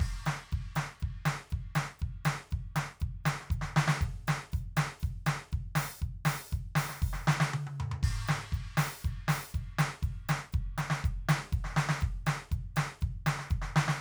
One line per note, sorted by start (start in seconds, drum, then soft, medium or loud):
0.01 kick medium
0.01 crash medium
0.26 closed hi-hat medium
0.26 snare loud
0.52 closed hi-hat soft
0.52 kick medium
0.76 closed hi-hat medium
0.76 snare loud
1.01 closed hi-hat soft
1.01 kick medium
1.26 closed hi-hat medium
1.26 snare loud
1.51 closed hi-hat soft
1.51 kick medium
1.76 closed hi-hat loud
1.76 snare loud
2.00 closed hi-hat soft
2.00 kick medium
2.26 closed hi-hat loud
2.26 snare loud
2.51 closed hi-hat soft
2.51 kick medium
2.76 closed hi-hat loud
2.76 snare loud
3.01 closed hi-hat medium
3.01 kick medium
3.24 closed hi-hat loud
3.24 snare loud
3.24 hi-hat pedal soft
3.41 snare soft
3.51 closed hi-hat medium
3.51 kick medium
3.62 snare medium
3.77 snare loud
3.88 snare loud
4.00 closed hi-hat medium
4.00 kick medium
4.00 hi-hat pedal soft
4.28 closed hi-hat medium
4.28 snare loud
4.52 open hi-hat soft
4.52 kick medium
4.77 closed hi-hat loud
4.77 snare loud
5.00 open hi-hat medium
5.00 kick medium
5.27 closed hi-hat loud
5.27 snare loud
5.52 closed hi-hat soft
5.52 kick medium
5.76 open hi-hat loud
5.76 snare loud
5.98 closed hi-hat medium
5.98 hi-hat pedal soft
6.02 kick medium
6.26 open hi-hat loud
6.26 snare loud
6.52 closed hi-hat soft
6.52 kick medium
6.76 open hi-hat loud
6.76 snare loud
6.90 snare medium
7.02 open hi-hat medium
7.02 kick medium
7.14 snare medium
7.28 snare loud
7.32 hi-hat pedal medium
7.41 snare loud
7.54 high tom loud
7.67 high tom medium
7.81 mid tom loud
7.92 mid tom medium
8.03 kick medium
8.03 crash medium
8.28 closed hi-hat medium
8.28 snare loud
8.53 closed hi-hat soft
8.53 kick medium
8.78 open hi-hat loud
8.78 snare loud
9.03 closed hi-hat soft
9.03 kick medium
9.03 hi-hat pedal soft
9.29 open hi-hat loud
9.29 snare loud
9.55 closed hi-hat medium
9.55 kick medium
9.79 closed hi-hat loud
9.79 snare loud
10.03 closed hi-hat medium
10.03 kick medium
10.29 closed hi-hat loud
10.29 snare loud
10.53 closed hi-hat medium
10.53 kick medium
10.78 closed hi-hat medium
10.78 snare medium
10.91 snare loud
11.05 closed hi-hat medium
11.05 kick medium
11.29 closed hi-hat loud
11.29 snare loud
11.53 closed hi-hat medium
11.53 kick medium
11.65 snare medium
11.71 snare soft
11.77 snare loud
11.89 snare loud
12.01 closed hi-hat medium
12.01 kick medium
12.27 closed hi-hat loud
12.27 snare loud
12.52 closed hi-hat medium
12.52 kick medium
12.77 closed hi-hat loud
12.77 snare loud
13.02 closed hi-hat medium
13.02 kick medium
13.27 closed hi-hat loud
13.27 snare loud
13.39 snare medium
13.51 closed hi-hat medium
13.51 kick medium
13.62 snare medium
13.76 snare loud
13.89 snare loud